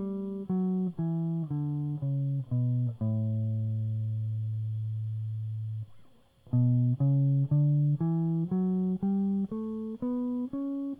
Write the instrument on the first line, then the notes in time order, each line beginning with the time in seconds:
electric guitar
0.00 G3
0.51 F#3
1.00 E3
1.57 D3
2.06 C#3
2.54 B2
3.04 A2
6.55 B2
7.02 C#3
7.53 D3
8.02 E3
8.53 F#3
9.04 G3
9.53 A3
10.03 B3
10.54 C#4